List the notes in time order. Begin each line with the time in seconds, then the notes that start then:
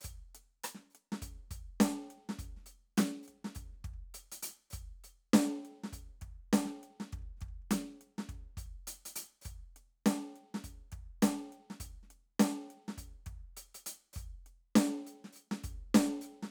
0.01 closed hi-hat, kick, hi-hat pedal
0.35 closed hi-hat
0.64 closed hi-hat, cross-stick
0.75 snare
0.90 hi-hat pedal
0.95 closed hi-hat
1.12 snare
1.22 closed hi-hat, kick
1.51 closed hi-hat, kick
1.80 closed hi-hat, snare
2.10 closed hi-hat
2.29 snare
2.39 closed hi-hat, kick
2.44 kick
2.56 snare
2.60 snare
2.66 closed hi-hat
2.97 closed hi-hat, snare
3.23 hi-hat pedal
3.28 kick, closed hi-hat
3.44 snare
3.55 closed hi-hat, kick
3.72 snare
3.84 kick, closed hi-hat
3.94 kick
4.14 closed hi-hat
4.32 closed hi-hat
4.43 closed hi-hat
4.70 closed hi-hat, kick, hi-hat pedal
5.04 closed hi-hat
5.34 closed hi-hat, snare
5.65 closed hi-hat
5.84 snare
5.93 closed hi-hat, kick
6.21 kick, closed hi-hat
6.53 closed hi-hat, snare
6.65 snare
6.83 closed hi-hat
7.00 snare
7.13 kick, closed hi-hat
7.19 kick
7.22 kick
7.37 snare, closed hi-hat
7.42 kick
7.48 kick
7.62 kick
7.71 closed hi-hat, snare
8.01 closed hi-hat
8.18 snare
8.29 kick, closed hi-hat
8.34 kick
8.57 closed hi-hat, kick
8.66 kick
8.87 closed hi-hat
9.05 closed hi-hat
9.16 closed hi-hat
9.42 closed hi-hat, kick, hi-hat pedal
9.76 closed hi-hat
10.06 closed hi-hat, snare
10.36 closed hi-hat
10.54 snare
10.64 closed hi-hat, kick
10.92 kick, closed hi-hat
11.22 closed hi-hat, snare
11.52 closed hi-hat
11.70 snare
11.80 closed hi-hat, kick
12.03 snare
12.10 closed hi-hat
12.40 closed hi-hat, snare
12.70 closed hi-hat
12.88 snare
12.98 closed hi-hat, kick
13.26 kick, closed hi-hat
13.57 closed hi-hat
13.75 closed hi-hat
13.86 closed hi-hat
14.13 kick, hi-hat pedal
14.17 closed hi-hat
14.46 closed hi-hat
14.76 closed hi-hat, snare
15.07 closed hi-hat
15.24 snare
15.33 closed hi-hat, hi-hat pedal
15.51 snare
15.64 closed hi-hat, kick
15.70 kick
15.73 kick
15.94 closed hi-hat, snare
16.21 closed hi-hat, hi-hat pedal
16.43 snare